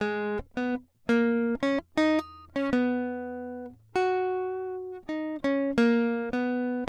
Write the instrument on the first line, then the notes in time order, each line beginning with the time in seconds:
acoustic guitar
0.02 G#3
0.58 B3
1.10 A#3
1.63 C#4
1.98 D#4
2.56 C#4
2.74 B3
3.96 F#4
5.10 D#4
5.45 C#4
5.78 A#3
6.34 B3